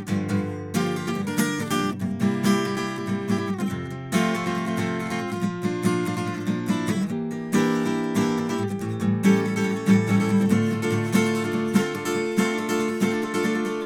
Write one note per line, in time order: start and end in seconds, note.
0.00 0.10 D3
0.09 0.30 G2
0.09 0.31 D3
0.09 0.33 F3
0.31 0.76 G2
0.31 0.75 D3
0.31 0.74 F3
0.76 1.16 G2
0.76 1.18 D3
0.76 1.10 F3
0.76 1.08 A#3
0.76 0.98 F4
0.76 0.98 G4
0.98 1.08 F4
0.98 1.09 G4
1.09 1.19 F3
1.09 1.22 A#3
1.09 1.28 D4
1.09 1.27 G4
1.17 1.35 G2
1.17 1.39 D3
1.17 1.26 F3
1.28 1.39 A#3
1.28 1.40 D4
1.28 1.41 A#4
1.39 1.80 D3
1.39 1.56 F3
1.39 1.50 A#3
1.39 1.62 D4
1.39 1.68 A#4
1.60 1.74 F3
1.60 1.73 A#3
1.60 1.73 D4
1.72 1.83 F3
1.72 1.92 A#3
1.72 1.97 D4
1.72 1.96 G4
1.80 2.00 G2
1.80 2.02 C3
1.80 1.94 F3
1.94 2.03 G3
1.94 2.04 B3
2.01 2.47 G2
2.01 2.22 C3
2.01 2.21 G3
2.01 2.23 A#3
2.22 3.08 C3
2.22 2.45 G3
2.22 2.46 A#3
2.22 2.46 E4
2.22 2.47 G4
2.45 3.52 G2
2.45 3.10 G3
2.45 2.65 A#3
2.45 2.67 E4
2.45 2.68 G4
2.67 2.80 A#3
2.67 2.79 E4
2.67 2.78 G4
2.79 2.96 A#3
2.79 3.00 E4
2.79 2.98 G4
2.98 3.11 A#3
2.98 3.11 E4
2.98 3.33 G4
3.09 3.53 C3
3.09 3.30 G3
3.09 3.28 A#3
3.09 3.32 E4
3.30 3.55 G3
3.30 3.47 A#3
3.30 3.41 E4
3.30 3.41 G4
3.41 3.54 E4
3.41 3.59 G4
3.60 3.71 D#3
3.60 4.16 C4
3.60 4.16 F4
3.71 3.92 F2
3.71 4.14 C3
3.71 3.83 F3
3.93 4.13 F3
4.14 4.42 F2
4.14 4.57 C3
4.14 4.47 F3
4.14 4.36 A3
4.14 4.36 C4
4.14 4.37 F4
4.36 4.49 A3
4.36 4.48 C4
4.36 4.47 F4
4.48 4.58 F3
4.48 4.59 A3
4.48 4.67 C4
4.48 4.67 F4
4.57 4.79 C3
4.57 4.70 F3
4.57 4.70 A3
4.67 4.80 F3
4.67 4.80 A3
4.67 4.81 C4
4.67 4.82 F4
4.80 5.22 C3
4.80 5.14 F3
4.80 5.02 A3
4.80 5.01 C4
4.80 5.10 F4
5.02 5.13 A3
5.02 5.12 C4
5.12 5.26 F3
5.12 5.26 A3
5.12 5.39 C4
5.12 5.33 F4
5.22 5.39 A#2
5.34 5.44 F3
5.34 5.66 F4
5.43 5.61 A#2
5.43 5.65 F3
5.64 5.85 A#2
5.64 5.85 F3
5.64 5.87 D4
5.64 5.88 F4
5.85 6.30 A#2
5.85 6.07 F3
5.85 6.09 D4
5.85 6.09 F4
6.07 6.20 F3
6.07 6.19 D4
6.07 6.19 F4
6.19 6.28 F3
6.19 6.29 D4
6.19 6.38 F4
6.29 6.47 F3
6.29 6.39 D4
6.40 6.50 D4
6.48 6.88 A#2
6.48 6.69 F3
6.48 6.71 D4
6.48 6.64 F4
6.70 6.89 F3
6.70 6.90 D4
6.70 6.92 E4
6.89 7.07 C#3
6.89 7.11 F#3
6.89 7.01 D#4
6.89 7.09 E4
7.09 7.54 E3
7.09 7.32 A#3
7.09 7.33 G4
7.33 7.55 A#3
7.33 7.55 E4
7.33 7.56 G4
7.55 8.18 E3
7.55 7.89 A#3
7.55 7.89 D4
7.55 7.85 E4
7.55 7.87 G4
7.88 8.18 A#3
7.88 8.18 D4
7.88 8.19 E4
7.88 8.19 G4
8.18 8.56 E3
8.18 8.53 A#3
8.18 8.39 D4
8.18 8.40 E4
8.18 8.40 G4
8.39 8.52 D4
8.39 8.49 E4
8.39 8.51 G4
8.51 8.61 A#3
8.51 8.59 D4
8.51 8.67 E4
8.51 8.70 G4
8.70 8.83 E3
8.70 9.26 G4
8.83 9.02 A2
8.83 9.01 E3
9.02 9.88 A2
9.02 9.25 E3
9.02 9.11 G3
9.25 9.47 E3
9.25 9.48 G3
9.25 9.47 C#4
9.25 9.46 G4
9.25 9.48 A4
9.47 9.66 E3
9.47 9.60 G3
9.47 9.59 C#4
9.47 9.58 A4
9.58 9.71 G3
9.58 9.69 C#4
9.58 9.77 G4
9.58 9.91 A4
9.66 9.89 E3
9.66 9.78 C#4
9.73 9.88 G3
9.78 9.89 C#4
9.88 10.50 A2
9.88 10.09 E3
9.88 10.10 G3
9.88 10.05 D4
9.88 10.07 F#4
9.88 10.12 A4
10.09 10.30 E3
10.09 10.24 G3
10.09 10.23 C#4
10.09 10.23 E4
10.09 10.22 A4
10.22 10.32 G3
10.22 10.36 C#4
10.22 10.32 E4
10.22 10.54 A4
10.31 10.43 D3
10.31 10.43 G3
10.31 10.42 E4
10.43 10.52 D3
10.43 10.53 A3
10.43 10.53 C4
10.43 10.54 F4
10.51 10.92 A2
10.51 10.93 D3
10.51 10.69 A3
10.51 10.64 C4
10.51 10.74 F4
10.51 10.75 A4
10.69 10.81 A3
10.75 10.85 F4
10.75 10.83 A4
10.81 10.93 A3
10.81 11.17 A4
10.85 10.95 D4
10.85 11.17 F4
10.92 11.45 A2
10.92 11.13 D3
10.92 11.16 A3
10.92 11.05 D4
11.15 11.53 D3
11.15 11.47 A3
11.15 11.32 C4
11.15 11.29 F4
11.15 11.38 A4
11.29 11.37 F4
11.36 11.46 D4
11.36 11.46 F4
11.36 11.47 A4
11.46 11.56 A3
11.46 11.56 D4
11.46 11.77 F4
11.46 11.77 A4
11.55 11.76 D3
11.55 11.77 A3
11.55 11.72 D4
11.76 12.14 D3
11.76 11.87 A3
11.76 11.95 C4
11.76 11.96 F4
11.76 11.97 A4
11.96 12.08 D4
11.96 12.07 F4
11.96 12.07 A4
12.07 12.17 A3
12.07 12.18 D4
12.07 12.40 F4
12.07 12.40 A4
12.16 12.30 D3
12.16 12.39 A3
12.16 12.31 D4
12.39 12.50 D3
12.39 12.72 A3
12.39 12.54 C4
12.39 12.60 F4
12.39 12.61 A4
12.55 12.72 D4
12.60 12.71 F4
12.60 12.71 A4
12.71 12.81 A3
12.71 12.82 D4
12.71 12.82 F4
12.71 12.90 A4
12.80 12.97 D3
12.80 13.04 A3
12.80 12.94 D4
12.80 12.92 F4
12.92 13.04 F4
13.03 13.14 D3
13.03 13.24 A3
13.03 13.15 C4
13.03 13.25 F4
13.03 13.25 A4
13.15 13.24 D4
13.24 13.35 A3
13.24 13.37 D4
13.24 13.36 F4
13.24 13.35 A4
13.36 13.46 A3
13.36 13.47 D4
13.36 13.46 F4
13.36 13.47 A4
13.45 13.86 D3
13.45 13.66 A3
13.45 13.57 D4
13.45 13.56 F4
13.45 13.56 A4
13.56 13.67 D4
13.56 13.67 F4
13.56 13.68 A4
13.67 13.86 A3
13.67 13.86 D4
13.67 13.86 F4
13.67 13.86 A4